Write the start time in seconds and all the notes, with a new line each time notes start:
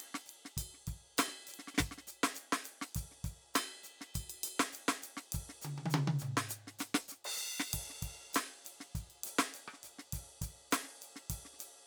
0.01 ride
0.15 snare
0.26 hi-hat pedal, ride
0.46 snare
0.58 kick, hi-hat pedal, ride bell
0.75 snare
0.87 kick, hi-hat pedal, ride
1.18 snare, hi-hat pedal, ride bell
1.29 snare
1.48 hi-hat pedal, ride bell
1.55 ride
1.60 snare
1.68 snare
1.75 snare
1.79 kick, snare, hi-hat pedal
1.87 kick
1.90 kick, snare
1.98 snare
2.08 hi-hat pedal, ride bell
2.24 snare
2.35 hi-hat pedal, ride
2.53 snare
2.65 hi-hat pedal, ride
2.82 snare
2.95 kick, hi-hat pedal, ride
3.06 kick
3.12 snare
3.18 snare
3.25 kick, hi-hat pedal, ride
3.55 snare, hi-hat pedal, ride bell
3.84 hi-hat pedal, ride
4.02 snare
4.15 kick, hi-hat pedal, ride bell
4.24 kick
4.30 ride bell
4.44 hi-hat pedal, ride bell
4.60 snare
4.73 hi-hat pedal, ride
4.89 snare
5.03 hi-hat pedal, ride
5.18 snare
5.33 kick, hi-hat pedal, ride
5.44 kick
5.50 snare
5.62 hi-hat pedal, high tom
5.78 high tom
5.86 high tom
5.91 hi-hat pedal
5.95 high tom
6.08 high tom
6.20 hi-hat pedal, mid tom
6.38 snare
6.50 closed hi-hat, hi-hat pedal
6.68 snare
6.79 snare, hi-hat pedal
6.95 snare
7.09 snare, hi-hat pedal
7.25 crash
7.37 hi-hat pedal
7.60 snare
7.71 kick, hi-hat pedal, ride
7.90 snare
7.97 cross-stick
8.02 kick, hi-hat pedal, ride
8.34 snare, hi-hat pedal, ride bell
8.65 hi-hat pedal, ride
8.81 snare
8.96 kick, snare, hi-hat pedal, ride bell
9.01 kick, snare
9.03 snare
9.10 snare, ride bell
9.24 hi-hat pedal, ride
9.39 snare
9.55 hi-hat pedal, ride
9.68 cross-stick
9.74 snare
9.84 kick, hi-hat pedal, ride
9.99 snare
10.13 kick, hi-hat pedal, ride
10.24 snare
10.42 kick, hi-hat pedal, ride
10.72 snare, hi-hat pedal, ride
10.85 snare
11.02 hi-hat pedal, ride
11.16 snare
11.30 kick, hi-hat pedal, ride
11.46 snare
11.54 snare
11.59 snare, hi-hat pedal, ride
11.62 snare